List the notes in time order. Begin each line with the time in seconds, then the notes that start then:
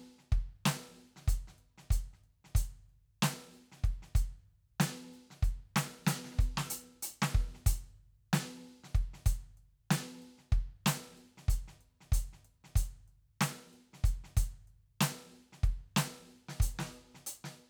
0.01 closed hi-hat
0.18 snare
0.32 kick, closed hi-hat
0.65 closed hi-hat, snare
0.97 snare
1.16 snare
1.20 snare
1.27 closed hi-hat, kick, snare
1.47 snare
1.58 closed hi-hat
1.78 snare
1.90 closed hi-hat, kick
2.13 snare
2.24 closed hi-hat
2.44 snare
2.55 closed hi-hat, kick
2.89 closed hi-hat
3.22 closed hi-hat, snare
3.53 closed hi-hat
3.72 snare
3.76 snare
3.84 kick, closed hi-hat
4.02 snare
4.15 closed hi-hat, kick
4.80 closed hi-hat, snare
5.08 snare
5.13 closed hi-hat
5.30 snare
5.43 closed hi-hat, kick
5.76 closed hi-hat, snare
6.07 closed hi-hat, snare
6.24 snare
6.31 snare
6.34 snare
6.37 closed hi-hat, kick, snare
6.57 snare
6.70 closed hi-hat
7.02 closed hi-hat
7.22 snare
7.35 kick
7.54 snare
7.66 closed hi-hat, kick
8.33 closed hi-hat, snare
8.56 snare
8.64 closed hi-hat
8.84 snare
8.95 kick, closed hi-hat
9.13 snare
9.26 closed hi-hat, kick
9.57 closed hi-hat
9.91 closed hi-hat, snare
10.22 closed hi-hat
10.38 snare
10.52 kick, closed hi-hat
10.86 closed hi-hat, snare
11.12 snare
11.18 closed hi-hat
11.37 snare
11.48 closed hi-hat, kick
11.68 snare
11.81 closed hi-hat
12.01 snare
12.12 closed hi-hat, kick
12.33 snare
12.45 closed hi-hat
12.64 snare
12.76 closed hi-hat, kick
13.08 closed hi-hat
13.41 closed hi-hat, snare
13.73 closed hi-hat
13.93 snare
14.04 closed hi-hat, kick
14.24 snare
14.37 closed hi-hat, kick
14.67 closed hi-hat
15.01 closed hi-hat, snare
15.33 closed hi-hat
15.52 snare
15.63 kick, closed hi-hat
15.67 crash
15.96 closed hi-hat, snare
16.49 snare
16.60 closed hi-hat, kick
16.79 snare
16.93 closed hi-hat
17.14 snare
17.26 closed hi-hat
17.44 snare